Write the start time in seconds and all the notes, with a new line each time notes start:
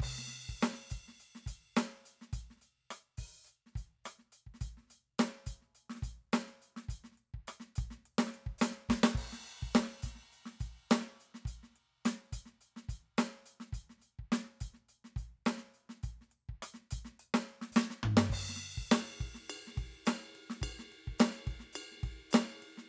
0.01 kick, crash
0.10 kick
0.19 snare
0.28 snare
0.33 closed hi-hat
0.50 kick
0.62 open hi-hat, snare
0.73 snare
0.91 closed hi-hat, kick
1.09 snare
1.20 closed hi-hat
1.36 snare
1.45 closed hi-hat, kick, snare
1.77 closed hi-hat, snare
2.06 closed hi-hat
2.22 snare
2.34 closed hi-hat, kick
2.39 kick
2.51 snare
2.57 snare
2.62 closed hi-hat
2.91 closed hi-hat, cross-stick
3.18 open hi-hat, kick
3.45 closed hi-hat, hi-hat pedal
3.67 snare
3.73 kick, snare
3.78 closed hi-hat
4.05 closed hi-hat, cross-stick, hi-hat pedal
4.19 snare
4.33 closed hi-hat
4.47 kick
4.55 snare
4.60 closed hi-hat, kick, snare
4.67 kick
4.78 snare
4.82 snare
4.88 snare
4.90 closed hi-hat, snare
5.19 closed hi-hat, snare
5.33 snare
5.47 closed hi-hat, kick
5.62 snare
5.75 closed hi-hat
5.90 snare
5.96 snare
6.03 closed hi-hat, kick
6.09 kick
6.33 closed hi-hat, snare
6.47 snare
6.63 closed hi-hat
6.77 snare
6.89 closed hi-hat, kick
7.05 snare
7.12 snare
7.18 closed hi-hat
7.35 kick
7.48 open hi-hat, cross-stick
7.61 snare
7.76 closed hi-hat, kick
7.85 kick
7.91 snare
8.06 closed hi-hat
8.19 snare
8.28 snare
8.35 closed hi-hat
8.47 kick
8.59 closed hi-hat, snare, hi-hat pedal
8.71 snare
8.90 kick, snare
9.04 snare
9.09 hi-hat pedal
9.15 kick, crash
9.22 kick
9.33 snare
9.43 closed hi-hat, snare
9.63 kick
9.75 open hi-hat, snare
9.84 snare
10.03 closed hi-hat, kick, snare
10.16 snare
10.33 closed hi-hat
10.46 snare
10.61 closed hi-hat, kick
10.67 kick
10.91 open hi-hat, snare, hi-hat pedal
11.02 snare
11.21 closed hi-hat
11.35 snare
11.46 closed hi-hat, kick
11.64 snare
11.70 snare
11.73 snare, closed hi-hat
12.06 closed hi-hat, snare
12.33 closed hi-hat, kick
12.46 snare
12.62 closed hi-hat
12.77 snare
12.89 closed hi-hat, kick
13.18 closed hi-hat, snare
13.46 closed hi-hat
13.61 snare
13.73 closed hi-hat, kick
13.90 snare
13.99 closed hi-hat, snare
14.20 kick
14.33 closed hi-hat, snare
14.45 snare
14.61 closed hi-hat, kick
14.74 snare
14.89 closed hi-hat
15.05 snare
15.17 closed hi-hat, kick
15.23 kick
15.46 closed hi-hat, snare
15.58 snare
15.75 closed hi-hat
15.90 snare
16.04 closed hi-hat, kick
16.10 kick
16.22 snare
16.29 snare, closed hi-hat
16.50 kick
16.63 closed hi-hat, cross-stick
16.75 snare
16.91 closed hi-hat, kick
16.99 kick
17.05 snare
17.20 hi-hat pedal, open hi-hat
17.35 snare
17.62 snare
17.72 kick, hi-hat pedal
17.77 snare
17.91 snare, hi-hat pedal
18.04 kick, floor tom
18.18 snare
18.31 kick, crash
18.37 kick
18.50 snare
18.57 snare
18.78 kick
18.92 snare, hi-hat pedal, ride bell
19.21 kick, ride
19.27 kick
19.35 snare
19.50 hi-hat pedal, ride bell
19.68 snare
19.76 kick, snare, ride
19.84 kick
19.87 kick
20.06 snare, hi-hat pedal, ride bell
20.36 ride
20.50 snare
20.58 kick, hi-hat pedal
20.64 ride bell
20.68 kick
20.80 snare
20.93 ride
21.08 kick
21.19 snare, hi-hat pedal, ride bell
21.32 snare
21.48 kick, ride
21.54 kick
21.57 kick, snare
21.73 hi-hat pedal, ride bell
21.92 snare
21.98 snare
22.04 kick, ride
22.13 kick
22.31 snare, hi-hat pedal, ride bell
22.63 ride
22.78 snare